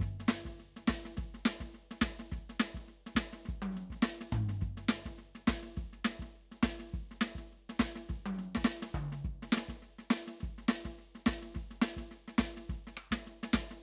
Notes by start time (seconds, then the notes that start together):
0.01 kick, snare
0.08 kick
0.20 snare
0.27 snare, hi-hat pedal
0.46 kick, snare
0.60 snare
0.77 snare
0.87 kick, snare, hi-hat pedal
1.06 snare
1.17 kick, snare
1.25 kick
1.35 snare
1.46 snare, hi-hat pedal
1.61 kick, snare
1.75 snare
1.91 snare
2.02 kick, snare, hi-hat pedal
2.11 kick
2.20 snare
2.32 kick, snare
2.39 kick
2.50 snare
2.60 snare, hi-hat pedal
2.75 kick, snare
2.89 snare
3.07 snare
3.16 kick, snare, hi-hat pedal
3.33 snare
3.46 kick, snare
3.55 kick
3.59 kick, high tom
3.72 hi-hat pedal
3.77 snare
3.91 kick, snare
4.03 snare
4.21 snare
4.31 kick, floor tom, hi-hat pedal
4.39 kick
4.42 kick
4.49 snare
4.62 kick, snare
4.69 kick
4.78 snare
4.89 snare, hi-hat pedal
5.06 kick, snare
5.19 snare
5.36 snare
5.48 kick, snare, hi-hat pedal
5.63 snare
5.77 kick, snare
5.85 kick
5.93 snare
6.05 snare, hi-hat pedal
6.20 kick, snare
6.52 snare
6.63 kick, snare, hi-hat pedal
6.70 kick
6.80 snare
6.92 kick, snare
7.01 kick
7.12 snare
7.21 snare, hi-hat pedal
7.36 kick, snare
7.53 snare
7.70 snare
7.79 kick, snare, hi-hat pedal
7.96 snare
8.09 kick, snare
8.17 kick
8.26 high tom
8.34 hi-hat pedal
8.39 snare
8.55 kick, snare
8.63 kick, snare
8.83 snare
8.93 kick, hi-hat pedal, mid tom
9.01 kick
9.04 kick
9.13 snare
9.25 kick
9.32 kick
9.35 kick
9.43 snare
9.51 snare, hi-hat pedal
9.58 snare
9.69 kick, snare
9.83 snare
9.99 snare
10.10 snare, hi-hat pedal
10.28 snare
10.41 kick, snare
10.50 kick
10.59 snare
10.68 snare, hi-hat pedal
10.85 kick, snare
10.99 snare
11.16 snare
11.26 kick, snare, hi-hat pedal
11.34 kick
11.43 snare
11.55 kick, snare
11.62 kick
11.65 kick
11.71 snare
11.82 snare, hi-hat pedal
11.97 kick, snare
12.12 snare
12.28 snare
12.39 kick, snare, hi-hat pedal
12.45 kick
12.57 snare
12.70 kick, snare
12.77 kick
12.87 snare
12.95 cross-stick, hi-hat pedal
13.12 kick, snare
13.27 snare
13.44 snare
13.54 kick, snare, hi-hat pedal
13.60 kick
13.71 snare